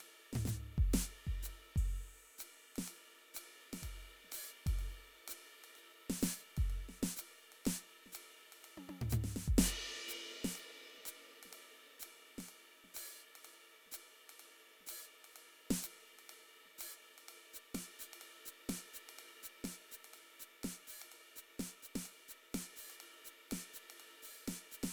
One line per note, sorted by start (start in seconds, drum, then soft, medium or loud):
0.01 ride medium
0.33 snare soft
0.33 floor tom medium
0.46 snare soft
0.46 floor tom medium
0.46 hi-hat pedal medium
0.79 kick medium
0.90 hi-hat pedal soft
0.90 ride loud
0.94 snare medium
1.27 kick soft
1.43 hi-hat pedal loud
1.43 ride medium
1.77 kick soft
1.77 crash medium
2.39 hi-hat pedal loud
2.39 ride loud
2.76 snare medium
2.76 ride medium
2.84 hi-hat pedal soft
2.84 ride loud
3.35 hi-hat pedal loud
3.35 ride loud
3.73 snare soft
3.73 ride loud
3.83 kick soft
3.83 hi-hat pedal soft
3.83 ride loud
4.25 snare soft
4.32 hi-hat pedal loud
4.32 ride loud
4.67 kick soft
4.67 ride loud
4.78 hi-hat pedal soft
4.78 ride medium
5.28 hi-hat pedal loud
5.28 ride loud
5.64 ride medium
5.76 hi-hat pedal soft
5.76 ride medium
6.10 snare medium
6.21 snare medium
6.21 hi-hat pedal medium
6.21 ride loud
6.41 hi-hat pedal soft
6.57 kick soft
6.57 ride medium
6.70 ride medium
6.89 snare soft
7.03 snare medium
7.17 hi-hat pedal loud
7.17 ride loud
7.37 hi-hat pedal soft
7.53 ride medium
7.62 hi-hat pedal soft
7.66 snare medium
7.66 ride loud
8.06 snare soft
8.13 hi-hat pedal medium
8.13 ride loud
8.53 ride medium
8.60 hi-hat pedal soft
8.65 ride medium
8.78 high tom soft
8.90 high tom soft
9.02 floor tom medium
9.10 floor tom medium
9.10 hi-hat pedal loud
9.24 snare soft
9.37 snare soft
9.48 kick soft
9.56 snare loud
9.56 hi-hat pedal soft
9.56 ride medium
10.09 hi-hat pedal loud
10.09 ride medium
10.45 snare medium
10.45 ride medium
10.56 hi-hat pedal soft
10.56 ride medium
10.98 snare soft
11.06 hi-hat pedal loud
11.06 ride loud
11.44 snare soft
11.44 hi-hat pedal soft
11.44 ride medium
11.53 ride loud
12.00 hi-hat pedal loud
12.00 ride loud
12.39 snare soft
12.39 ride medium
12.49 ride medium
12.85 snare soft
12.95 hi-hat pedal loud
12.95 ride loud
13.36 ride medium
13.42 hi-hat pedal soft
13.42 ride medium
13.87 snare soft
13.92 hi-hat pedal loud
13.92 ride loud
14.30 ride medium
14.38 hi-hat pedal soft
14.38 ride medium
14.81 snare soft
14.87 hi-hat pedal loud
14.87 ride loud
15.25 ride medium
15.31 hi-hat pedal soft
15.37 ride medium
15.71 snare medium
15.82 hi-hat pedal loud
15.82 ride loud
16.19 ride medium
16.25 hi-hat pedal soft
16.30 ride medium
16.66 snare soft
16.79 hi-hat pedal loud
16.79 ride loud
17.19 ride medium
17.29 ride loud
17.54 hi-hat pedal medium
17.75 snare soft
17.75 ride loud
18.00 hi-hat pedal medium
18.14 ride medium
18.22 ride medium
18.46 hi-hat pedal loud
18.68 snare medium
18.68 hi-hat pedal soft
18.68 ride loud
18.94 hi-hat pedal medium
19.09 ride medium
19.16 hi-hat pedal soft
19.16 ride medium
19.43 hi-hat pedal loud
19.65 snare soft
19.65 ride loud
19.92 hi-hat pedal medium
20.05 ride medium
20.14 hi-hat pedal soft
20.14 ride medium
20.40 hi-hat pedal medium
20.62 snare soft
20.62 hi-hat pedal soft
20.62 ride loud
20.88 hi-hat pedal medium
21.02 ride loud
21.12 ride medium
21.36 hi-hat pedal medium
21.59 snare soft
21.59 hi-hat pedal soft
21.59 ride medium
21.83 hi-hat pedal medium
21.96 snare soft
21.96 ride medium
22.05 hi-hat pedal soft
22.05 ride medium
22.29 hi-hat pedal medium
22.52 snare medium
22.52 hi-hat pedal soft
22.52 ride loud
22.77 hi-hat pedal medium
22.91 ride medium
23.00 hi-hat pedal soft
23.00 ride medium
23.25 hi-hat pedal medium
23.48 hi-hat pedal soft
23.48 ride loud
23.53 snare soft
23.74 hi-hat pedal medium
23.91 ride medium
23.97 hi-hat pedal soft
23.97 ride medium
24.23 hi-hat pedal medium
24.47 snare soft
24.47 hi-hat pedal soft
24.47 ride loud
24.72 hi-hat pedal medium
24.84 snare medium
24.84 ride loud